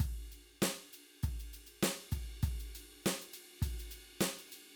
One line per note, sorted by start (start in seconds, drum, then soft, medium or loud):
0.02 kick medium
0.02 ride medium
0.32 ride soft
0.62 snare loud
0.62 ride medium
0.93 ride medium
1.23 kick medium
1.23 ride medium
1.39 ride medium
1.53 hi-hat pedal soft
1.53 ride medium
1.66 ride medium
1.82 snare loud
1.82 ride loud
2.12 kick medium
2.12 ride medium
2.43 kick medium
2.43 ride medium
2.60 ride medium
2.75 hi-hat pedal soft
2.75 ride medium
3.03 snare loud
3.03 hi-hat pedal soft
3.03 ride medium
3.21 ride medium
3.31 hi-hat pedal soft
3.31 ride medium
3.62 kick medium
3.62 ride loud
3.79 ride medium
3.90 hi-hat pedal soft
3.90 ride medium
4.20 snare loud
4.20 hi-hat pedal medium
4.20 ride loud
4.38 ride medium
4.48 hi-hat pedal soft
4.48 ride medium